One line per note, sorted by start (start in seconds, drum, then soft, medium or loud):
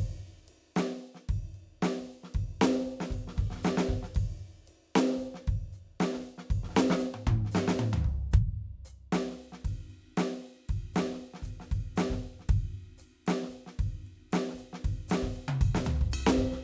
0.46 hi-hat pedal soft
0.46 crash soft
0.76 snare loud
0.76 crash soft
0.99 hi-hat pedal soft
1.15 snare soft
1.29 kick medium
1.29 crash soft
1.54 hi-hat pedal soft
1.54 crash soft
1.82 snare loud
1.82 crash medium
2.00 kick soft
2.08 crash soft
2.23 snare soft
2.34 kick medium
2.34 crash soft
2.61 snare loud
2.61 crash soft
2.79 snare soft
2.85 kick soft
2.85 crash soft
3.00 snare medium
3.09 kick medium
3.09 hi-hat pedal soft
3.09 crash medium
3.27 snare medium
3.36 kick medium
3.36 snare soft
3.36 crash soft
3.50 snare soft
3.55 snare soft
3.57 snare soft
3.63 snare loud
3.63 hi-hat pedal medium
3.77 snare loud
3.89 kick medium
3.89 snare soft
4.03 snare soft
4.15 kick medium
4.15 crash medium
4.39 crash soft
4.66 hi-hat pedal soft
4.66 crash soft
4.95 snare loud
4.95 crash soft
5.11 snare soft
5.15 kick soft
5.15 snare soft
5.19 hi-hat pedal soft
5.34 snare soft
5.47 kick medium
5.47 crash soft
5.73 hi-hat pedal soft
5.73 crash soft
6.00 snare loud
6.00 crash medium
6.13 kick soft
6.13 snare soft
6.18 snare soft
6.24 hi-hat pedal soft
6.24 crash soft
6.38 snare soft
6.50 kick medium
6.50 crash medium
6.63 snare soft
6.69 snare soft
6.72 snare soft
6.72 hi-hat pedal medium
6.77 snare loud
6.90 snare loud
6.96 kick soft
6.96 hi-hat pedal medium
7.04 ride soft
7.14 mid tom medium
7.27 kick medium
7.27 mid tom loud
7.45 snare soft
7.52 snare loud
7.52 hi-hat pedal medium
7.68 snare loud
7.74 kick soft
7.74 hi-hat pedal soft
7.79 mid tom loud
7.93 floor tom loud
8.04 kick medium
8.31 kick loud
8.31 hi-hat pedal soft
8.85 hi-hat pedal medium
9.12 snare loud
9.12 ride medium
9.30 snare soft
9.52 snare soft
9.64 kick medium
9.64 ride medium
9.89 hi-hat pedal soft
9.89 ride soft
10.17 snare loud
10.17 ride medium
10.42 ride soft
10.54 snare soft
10.69 kick medium
10.69 ride medium
10.94 snare loud
10.94 hi-hat pedal soft
10.94 ride medium
11.13 snare soft
11.22 ride soft
11.34 snare soft
11.37 snare soft
11.42 kick soft
11.42 hi-hat pedal soft
11.42 ride soft
11.60 snare soft
11.71 kick medium
11.71 ride medium
11.96 snare loud
11.96 hi-hat pedal medium
11.96 ride medium
12.10 kick medium
12.10 snare soft
12.23 ride soft
12.39 snare soft
12.49 kick loud
12.49 ride medium
12.74 ride soft
12.98 hi-hat pedal soft
12.98 ride soft
13.27 snare loud
13.27 ride medium
13.43 snare soft
13.48 kick soft
13.48 hi-hat pedal soft
13.53 ride soft
13.66 snare soft
13.79 kick medium
13.79 ride medium
14.07 ride soft
14.31 snare loud
14.31 hi-hat pedal soft
14.31 ride medium
14.49 snare soft
14.54 kick soft
14.54 hi-hat pedal soft
14.58 ride soft
14.73 snare medium
14.84 kick medium
14.84 ride medium
15.08 snare loud
15.08 hi-hat pedal medium
15.08 ride medium
15.22 kick medium
15.22 snare soft
15.33 hi-hat pedal soft
15.33 ride bell soft
15.48 high tom loud
15.61 kick loud
15.61 ride bell medium
15.75 snare loud
15.84 floor tom loud
15.84 hi-hat pedal medium
16.01 kick medium
16.12 hi-hat pedal medium
16.12 ride bell loud
16.27 snare loud
16.37 kick medium
16.52 snare soft